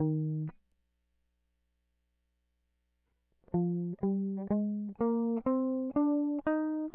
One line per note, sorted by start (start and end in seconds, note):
0.02 0.53 D#3
3.55 3.97 F3
4.04 4.51 G3
4.52 4.96 G#3
5.02 5.42 A#3
5.47 5.94 C4
5.97 6.44 D4
6.47 6.92 D#4